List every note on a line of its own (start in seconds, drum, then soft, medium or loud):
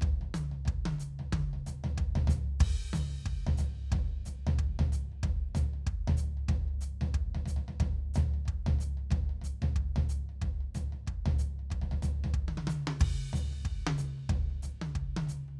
0.01 kick medium
0.01 floor tom medium
0.21 kick soft
0.21 floor tom soft
0.34 hi-hat pedal medium
0.34 high tom loud
0.51 floor tom soft
0.65 kick medium
0.65 floor tom medium
0.85 high tom loud
0.98 floor tom soft
0.98 hi-hat pedal medium
1.19 floor tom medium
1.33 kick medium
1.33 high tom loud
1.53 floor tom soft
1.66 floor tom medium
1.66 hi-hat pedal medium
1.84 floor tom loud
1.97 kick medium
1.97 floor tom medium
2.15 floor tom loud
2.27 floor tom loud
2.27 hi-hat pedal medium
2.60 kick loud
2.60 floor tom medium
2.60 crash medium
2.93 floor tom medium
2.93 hi-hat pedal medium
2.93 high tom loud
3.26 kick medium
3.26 floor tom soft
3.47 floor tom loud
3.57 floor tom medium
3.57 hi-hat pedal medium
3.90 kick medium
3.90 floor tom soft
3.93 floor tom loud
4.25 floor tom medium
4.25 hi-hat pedal medium
4.47 floor tom loud
4.59 kick medium
4.59 floor tom soft
4.79 floor tom loud
4.92 floor tom soft
4.92 hi-hat pedal medium
5.12 floor tom soft
5.23 kick medium
5.23 floor tom medium
5.55 floor tom loud
5.55 hi-hat pedal medium
5.73 floor tom soft
5.86 kick medium
5.86 floor tom soft
6.07 floor tom loud
6.17 floor tom soft
6.17 hi-hat pedal medium
6.37 floor tom soft
6.48 kick medium
6.48 floor tom loud
6.67 kick soft
6.67 floor tom soft
6.81 floor tom soft
6.81 hi-hat pedal medium
7.01 floor tom loud
7.14 kick medium
7.14 floor tom soft
7.35 floor tom medium
7.46 floor tom medium
7.46 hi-hat pedal medium
7.56 floor tom medium
7.68 floor tom medium
7.80 kick medium
7.80 floor tom loud
8.14 floor tom loud
8.14 hi-hat pedal medium
8.34 floor tom soft
8.45 kick medium
8.45 floor tom soft
8.66 floor tom loud
8.79 floor tom soft
8.79 hi-hat pedal medium
8.97 floor tom soft
9.11 kick medium
9.11 floor tom loud
9.29 floor tom soft
9.42 floor tom medium
9.42 hi-hat pedal medium
9.62 floor tom loud
9.76 kick medium
9.76 floor tom soft
9.96 floor tom loud
10.09 floor tom soft
10.09 hi-hat pedal medium
10.29 floor tom soft
10.41 kick medium
10.41 floor tom medium
10.60 floor tom soft
10.75 floor tom medium
10.75 hi-hat pedal medium
10.92 floor tom soft
11.07 kick medium
11.07 floor tom soft
11.26 floor tom loud
11.31 floor tom soft
11.39 floor tom soft
11.39 hi-hat pedal medium
11.59 floor tom soft
11.70 kick medium
11.70 floor tom medium
11.81 floor tom medium
11.91 floor tom medium
12.02 floor tom loud
12.02 hi-hat pedal medium
12.24 floor tom loud
12.34 kick medium
12.38 high tom soft
12.57 high tom loud
12.67 hi-hat pedal medium
12.67 high tom loud
12.87 high tom loud
13.00 kick loud
13.00 crash medium
13.33 floor tom loud
13.33 hi-hat pedal medium
13.52 high tom soft
13.65 kick medium
13.65 floor tom soft
13.87 high tom loud
13.98 floor tom soft
13.98 hi-hat pedal medium
14.17 high tom soft
14.29 kick medium
14.29 floor tom loud
14.50 high tom soft
14.62 floor tom medium
14.62 hi-hat pedal medium
14.81 high tom loud
14.95 kick medium
14.95 floor tom soft
15.16 high tom loud
15.27 floor tom soft
15.27 hi-hat pedal medium
15.48 high tom soft